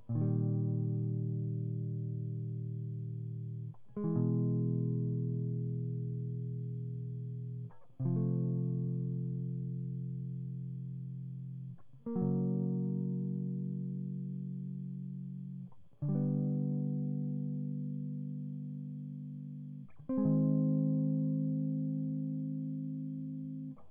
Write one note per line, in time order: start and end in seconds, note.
0.10 3.72 A#2
0.16 3.75 D#3
0.21 3.72 G3
3.97 7.71 G#3
4.04 7.72 E3
4.17 7.69 B2
8.01 11.76 C3
8.06 11.77 F3
8.16 10.77 A3
12.06 15.25 A#3
12.16 15.70 F#3
12.22 15.67 C#3
16.03 19.87 D3
16.09 19.88 G3
16.15 19.87 B3
20.09 23.75 C4
20.18 23.76 G#3
20.26 23.76 D#3